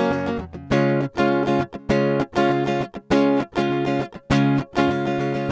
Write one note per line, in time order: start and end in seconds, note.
0.00 0.13 C#3
0.00 0.13 F#3
0.00 0.14 A#3
0.00 0.15 C#4
0.12 0.37 F#2
0.12 0.26 C#3
0.12 0.24 F#3
0.12 0.30 A#3
0.12 0.37 C#4
0.31 0.40 F#3
0.31 0.44 A#3
0.42 0.51 F#3
0.58 0.73 C#3
0.73 1.12 C#3
0.73 1.11 G#3
0.73 1.12 C#4
0.73 1.11 F4
1.21 1.51 C#3
1.21 1.51 G#3
1.21 1.50 C#4
1.21 1.47 F4
1.50 1.61 C#3
1.50 1.68 G#3
1.50 1.70 C#4
1.50 1.70 F4
1.62 1.70 C#3
1.92 2.29 C#3
1.92 2.30 G#3
1.92 2.29 C#4
1.92 2.31 F4
2.39 2.50 C#3
2.39 2.52 G#3
2.39 2.53 C#4
2.39 2.70 F4
2.52 2.71 C#3
2.52 2.71 G#3
2.52 2.71 C#4
2.70 2.91 C#3
2.70 2.92 G#3
2.70 2.91 C#4
2.70 2.86 F4
3.13 3.49 G#3
3.13 3.50 C#4
3.13 3.51 F4
3.59 3.72 C#3
3.59 3.73 G#3
3.59 3.73 C#4
3.59 3.87 F4
3.72 4.01 C#3
3.72 3.90 G#3
3.72 3.87 C#4
3.88 4.12 G#3
3.88 4.03 C#4
3.88 4.04 F4
4.02 4.09 C#3
4.33 4.65 C#3
4.33 4.68 G#3
4.33 4.69 C#4
4.33 4.61 F4
4.79 4.91 C#3
4.79 4.93 G#3
4.79 4.90 C#4
4.79 4.94 F4
4.91 5.21 C#3
4.91 5.10 G#3
4.91 5.10 C#4
4.91 5.08 F4
5.08 5.20 G#3
5.08 5.21 C#4
5.08 5.22 F4
5.21 5.38 C#3
5.21 5.38 G#3
5.21 5.37 C#4
5.21 5.36 F4
5.36 5.52 C#3
5.36 5.52 G#3
5.36 5.52 C#4
5.36 5.52 F4